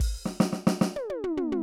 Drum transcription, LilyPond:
\new DrumStaff \drummode { \time 4/4 \tempo 4 = 144 \tuplet 3/2 { <bd hho>8 r8 sn8 sn8 sn8 sn8 sn8 tommh8 tommh8 tomfh8 tomfh8 tomfh8 } | }